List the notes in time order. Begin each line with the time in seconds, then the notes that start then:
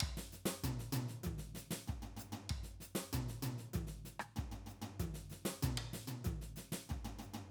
0.01 kick, high tom
0.09 kick
0.18 snare
0.33 snare, hi-hat pedal
0.46 snare
0.64 kick, mid tom
0.72 kick
0.80 snare
0.93 hi-hat pedal, mid tom
1.09 snare
1.24 kick, high tom
1.33 kick
1.39 snare
1.55 snare, hi-hat pedal
1.71 snare
1.88 kick, floor tom
2.03 floor tom
2.17 floor tom, hi-hat pedal
2.33 floor tom
2.50 kick, high tom
2.57 kick
2.64 snare
2.81 snare, hi-hat pedal
2.96 snare
3.14 kick, mid tom
3.29 snare
3.43 hi-hat pedal, mid tom
3.59 snare
3.74 kick, high tom
3.82 kick
3.88 snare
4.06 snare, hi-hat pedal
4.20 cross-stick
4.37 kick, floor tom
4.45 kick
4.52 floor tom
4.67 floor tom, hi-hat pedal
4.82 floor tom
5.00 kick, high tom
5.06 kick
5.15 snare
5.30 snare, hi-hat pedal
5.46 snare
5.63 kick, mid tom
5.70 kick
5.78 mid tom
5.94 snare, hi-hat pedal
6.08 mid tom
6.25 kick, high tom
6.33 kick
6.42 snare
6.57 snare, hi-hat pedal
6.73 snare
6.90 kick, floor tom
6.97 kick
7.05 floor tom
7.19 floor tom, hi-hat pedal
7.34 floor tom